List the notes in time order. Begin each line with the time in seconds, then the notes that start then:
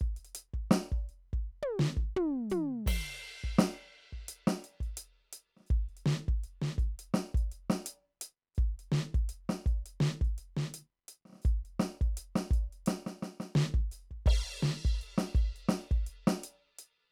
0.01 kick
0.17 closed hi-hat
0.25 closed hi-hat
0.35 closed hi-hat
0.54 kick
0.71 snare
0.92 kick
1.09 closed hi-hat
1.33 kick
1.62 high tom
1.79 snare
1.97 kick
2.16 floor tom
2.50 floor tom, hi-hat pedal
2.86 kick, crash, ride
3.44 kick
3.59 snare
4.13 kick
4.28 closed hi-hat
4.47 snare
4.64 closed hi-hat
4.81 kick, closed hi-hat
4.97 open hi-hat
5.33 open hi-hat
5.57 snare
5.60 snare
5.67 kick, hi-hat pedal
5.89 closed hi-hat
5.97 closed hi-hat
6.06 snare
6.28 kick
6.44 closed hi-hat
6.62 snare
6.78 kick, closed hi-hat
6.99 closed hi-hat
7.14 snare
7.35 kick, closed hi-hat
7.52 closed hi-hat
7.70 snare
7.86 open hi-hat
8.21 open hi-hat
8.55 kick, hi-hat pedal
8.62 closed hi-hat
8.79 closed hi-hat
8.92 snare
9.14 kick, closed hi-hat
9.29 closed hi-hat
9.49 snare
9.66 kick, closed hi-hat
9.86 closed hi-hat
10.00 snare
10.21 kick, closed hi-hat
10.38 closed hi-hat
10.57 snare
10.74 open hi-hat
11.08 open hi-hat
11.25 snare
11.30 snare
11.33 snare
11.35 snare
11.40 snare, hi-hat pedal
11.45 kick, closed hi-hat
11.65 closed hi-hat
11.80 snare
12.01 kick, closed hi-hat
12.17 closed hi-hat
12.36 snare
12.51 kick, closed hi-hat
12.73 closed hi-hat
12.86 closed hi-hat, snare
13.07 snare
13.23 snare
13.40 snare
13.55 snare
13.74 kick
13.92 hi-hat pedal
14.11 kick
14.26 kick, crash
14.63 snare
14.85 kick, closed hi-hat
15.01 closed hi-hat
15.18 snare
15.35 kick, closed hi-hat
15.56 closed hi-hat
15.69 snare
15.91 kick, closed hi-hat
16.07 closed hi-hat
16.27 snare
16.44 open hi-hat
16.79 open hi-hat